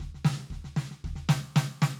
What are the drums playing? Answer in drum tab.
SD |ggoggooggoo-o-o-|
BD |o---o---o-------|